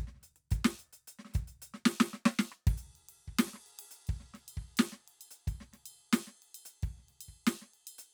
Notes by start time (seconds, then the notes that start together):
0.07 snare
0.15 snare
0.20 closed hi-hat, snare
0.36 closed hi-hat
0.51 closed hi-hat, kick
0.65 snare
0.79 closed hi-hat
0.93 closed hi-hat
1.08 closed hi-hat
1.19 snare
1.25 snare
1.29 snare
1.33 closed hi-hat, kick, snare
1.36 snare
1.41 snare
1.48 closed hi-hat
1.62 closed hi-hat
1.74 snare
1.86 snare
2.00 snare
2.13 snare
2.26 snare
2.39 snare
2.52 cross-stick
2.67 kick, ride
2.78 open hi-hat
2.96 ride
3.09 ride
3.28 kick
3.39 snare, ride
3.47 snare
3.54 cross-stick, snare
3.66 ride
3.79 ride
3.91 closed hi-hat
4.07 kick, ride bell
4.20 snare
4.34 snare, ride
4.48 ride bell
4.57 kick
4.77 snare, ride bell
4.92 snare
5.08 ride
5.21 ride bell
5.31 closed hi-hat
5.47 kick, ride bell
5.61 snare
5.73 snare, ride
5.86 ride bell
6.13 snare, ride bell
6.27 snare
6.42 ride
6.55 ride bell
6.65 closed hi-hat
6.83 kick, ride
6.98 snare
7.09 snare, ride
7.21 ride bell
7.28 kick
7.47 snare, ride bell
7.62 snare
7.74 ride
7.87 ride bell
7.99 closed hi-hat